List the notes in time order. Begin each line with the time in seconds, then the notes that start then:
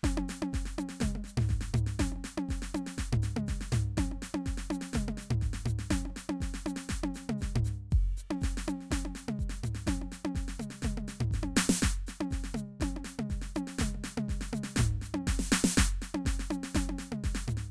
0.01 kick, snare, hi-hat pedal, high tom
0.18 high tom
0.29 snare, hi-hat pedal
0.43 high tom
0.53 kick, snare, hi-hat pedal
0.66 snare
0.79 hi-hat pedal, high tom
0.89 snare
1.01 kick, snare, hi-hat pedal, mid tom
1.16 mid tom
1.25 snare, hi-hat pedal
1.38 snare, floor tom
1.49 kick, snare, hi-hat pedal
1.61 snare
1.74 floor tom, hi-hat pedal
1.87 snare
2.00 kick, snare, hi-hat pedal, high tom
2.12 high tom
2.16 high tom
2.25 snare, hi-hat pedal
2.38 high tom
2.49 kick, snare, hi-hat pedal
2.63 snare
2.75 hi-hat pedal, high tom
2.87 snare
2.98 kick, snare, hi-hat pedal
3.13 floor tom
3.23 snare, hi-hat pedal
3.37 mid tom
3.47 kick, snare, hi-hat pedal
3.61 snare
3.73 snare, floor tom, hi-hat pedal
3.98 kick, snare, hi-hat pedal, high tom
4.12 high tom
4.23 snare, hi-hat pedal
4.35 high tom
4.46 kick, snare, hi-hat pedal
4.58 snare
4.71 hi-hat pedal, high tom
4.82 snare
4.94 kick, snare, hi-hat pedal, mid tom
5.09 mid tom
5.18 snare, hi-hat pedal
5.31 floor tom
5.42 kick, snare, hi-hat pedal
5.54 snare
5.66 floor tom, hi-hat pedal
5.79 snare
5.91 kick, snare, hi-hat pedal, high tom
6.06 high tom
6.10 high tom
6.17 snare, hi-hat pedal
6.30 high tom
6.41 kick, snare, hi-hat pedal
6.55 snare
6.67 hi-hat pedal, high tom
6.77 snare
6.90 kick, snare, hi-hat pedal
7.04 high tom
7.15 snare, hi-hat pedal
7.30 mid tom
7.39 kick, snare, hi-hat pedal
7.56 floor tom
7.65 snare, hi-hat pedal
7.91 kick, hi-hat pedal, ride
8.18 hi-hat pedal
8.31 high tom
8.41 kick, snare, hi-hat pedal
8.58 snare
8.68 hi-hat pedal, high tom
8.81 snare
8.91 kick, snare, hi-hat pedal, high tom
9.06 high tom
9.16 snare, hi-hat pedal
9.29 mid tom
9.40 kick, hi-hat pedal
9.50 snare
9.64 floor tom, hi-hat pedal
9.75 snare
9.87 kick, snare, hi-hat pedal, high tom
10.02 high tom
10.12 snare, hi-hat pedal
10.25 high tom
10.36 kick, snare, hi-hat pedal
10.49 snare
10.60 hi-hat pedal, mid tom
10.71 snare
10.83 kick, snare, hi-hat pedal, mid tom
10.98 mid tom
11.08 snare, hi-hat pedal
11.21 floor tom
11.32 kick, snare, hi-hat pedal
11.44 high tom
11.57 snare, hi-hat pedal
11.70 snare
11.80 kick, snare, hi-hat pedal
12.07 snare, hi-hat pedal
12.21 high tom
12.31 kick, snare, hi-hat pedal
12.44 snare
12.55 hi-hat pedal, mid tom
12.81 kick, snare, hi-hat pedal, high tom
12.97 high tom
13.05 snare, hi-hat pedal
13.19 mid tom
13.30 kick, snare, hi-hat pedal
13.42 snare
13.56 hi-hat pedal, high tom
13.68 snare
13.79 kick, snare, hi-hat pedal, mid tom
13.95 mid tom
14.04 snare, hi-hat pedal
14.18 mid tom
14.29 kick, snare, hi-hat pedal
14.41 snare
14.53 hi-hat pedal, mid tom
14.64 snare
14.77 kick, snare, floor tom, hi-hat pedal
15.02 snare, hi-hat pedal
15.15 high tom
15.28 kick, snare, hi-hat pedal
15.40 snare
15.52 snare, hi-hat pedal
15.65 snare
15.76 kick, snare, hi-hat pedal
16.02 snare, hi-hat pedal
16.15 high tom
16.26 kick, snare, hi-hat pedal
16.40 snare
16.51 hi-hat pedal, high tom
16.64 snare
16.75 kick, snare, hi-hat pedal, high tom
16.90 high tom
16.99 snare, hi-hat pedal
17.12 mid tom
17.24 kick, snare, hi-hat pedal
17.35 snare
17.48 floor tom, hi-hat pedal
17.58 snare